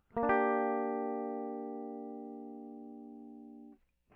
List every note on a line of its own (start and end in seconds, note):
0.17 3.76 A#3
0.23 3.76 D4
0.29 3.76 G4